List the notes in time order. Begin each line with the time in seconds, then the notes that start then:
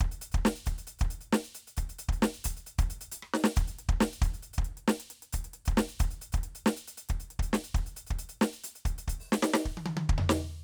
0.01 kick, closed hi-hat
0.12 closed hi-hat
0.22 closed hi-hat
0.32 closed hi-hat, kick
0.46 snare
0.56 closed hi-hat
0.67 closed hi-hat, kick
0.79 closed hi-hat
0.88 closed hi-hat
1.00 closed hi-hat, kick
1.11 closed hi-hat
1.22 closed hi-hat
1.34 snare
1.45 closed hi-hat
1.56 closed hi-hat
1.68 closed hi-hat
1.78 closed hi-hat, kick
1.90 closed hi-hat
2.00 closed hi-hat
2.10 closed hi-hat, kick
2.23 snare
2.35 closed hi-hat
2.45 closed hi-hat, kick
2.58 closed hi-hat
2.67 closed hi-hat
2.79 closed hi-hat, kick
2.91 closed hi-hat
3.02 closed hi-hat
3.12 closed hi-hat
3.23 cross-stick
3.35 snare
3.45 snare
3.57 closed hi-hat, kick
3.69 closed hi-hat
3.80 closed hi-hat
3.90 kick, closed hi-hat
4.01 snare
4.14 closed hi-hat
4.22 closed hi-hat, kick
4.35 closed hi-hat
4.43 closed hi-hat
4.54 closed hi-hat
4.59 kick
4.65 closed hi-hat
4.78 closed hi-hat
4.89 snare
5.01 closed hi-hat
5.11 closed hi-hat
5.23 closed hi-hat
5.34 closed hi-hat, kick
5.45 closed hi-hat
5.54 closed hi-hat
5.66 closed hi-hat, kick
5.78 snare
5.89 closed hi-hat
6.00 closed hi-hat, kick
6.12 closed hi-hat
6.22 closed hi-hat
6.33 closed hi-hat, kick
6.44 closed hi-hat
6.56 closed hi-hat
6.67 snare
6.77 closed hi-hat
6.88 closed hi-hat
6.98 closed hi-hat
7.10 kick, closed hi-hat
7.21 closed hi-hat
7.31 closed hi-hat
7.40 closed hi-hat, kick
7.54 snare
7.65 closed hi-hat
7.75 kick, closed hi-hat
7.87 closed hi-hat
7.97 closed hi-hat
8.07 closed hi-hat, kick
8.20 closed hi-hat
8.30 closed hi-hat
8.42 snare
8.54 closed hi-hat
8.65 closed hi-hat
8.76 closed hi-hat
8.86 closed hi-hat, kick
8.99 closed hi-hat
9.09 open hi-hat, kick
9.21 open hi-hat
9.30 snare, hi-hat pedal
9.43 snare
9.55 snare
9.66 kick, hi-hat pedal
9.78 high tom
9.87 high tom
9.98 high tom
10.10 kick
10.19 floor tom
10.30 snare